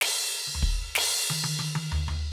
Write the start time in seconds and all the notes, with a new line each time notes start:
0.01 snare, crash
0.47 high tom
0.54 floor tom
0.63 kick
0.95 snare, crash
1.30 high tom
1.44 high tom
1.59 high tom
1.75 high tom
1.92 floor tom
2.08 floor tom